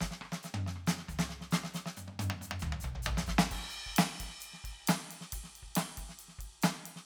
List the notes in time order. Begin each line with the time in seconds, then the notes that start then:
0.01 kick, snare, hi-hat pedal
0.09 kick, snare
0.22 cross-stick
0.26 cross-stick
0.32 snare
0.43 snare, hi-hat pedal
0.54 high tom
0.67 snare
0.76 cross-stick
0.87 snare, hi-hat pedal
1.09 kick, hi-hat pedal, mid tom
1.19 snare
1.30 snare
1.41 snare
1.51 snare, hi-hat pedal
1.64 snare
1.74 snare, hi-hat pedal
1.86 snare
1.97 hi-hat pedal, high tom
2.08 high tom
2.20 hi-hat pedal, high tom
2.30 high tom
2.42 hi-hat pedal, high tom
2.52 high tom
2.60 kick, hi-hat pedal, mid tom
2.68 kick
2.73 mid tom
2.81 kick, hi-hat pedal
2.85 floor tom
2.95 floor tom
3.03 hi-hat pedal, floor tom
3.07 kick
3.18 snare
3.27 kick, snare, hi-hat pedal
3.37 kick, snare
3.51 kick, ride
3.61 kick, cross-stick
3.70 hi-hat pedal
3.86 kick
3.97 snare, hi-hat pedal, ride
4.20 kick, ride
4.27 kick, snare
4.41 hi-hat pedal, ride
4.54 snare
4.64 kick, ride
4.71 kick
4.87 snare, hi-hat pedal, ride
5.11 ride
5.21 snare
5.33 kick, hi-hat pedal, ride
5.40 kick
5.44 snare
5.56 ride
5.63 kick
5.68 kick
5.76 snare, hi-hat pedal, ride
5.98 kick, ride
6.04 kick
6.09 snare
6.19 hi-hat pedal, ride
6.28 snare
6.34 snare
6.39 kick, ride
6.62 snare, hi-hat pedal, ride
6.86 ride
6.96 snare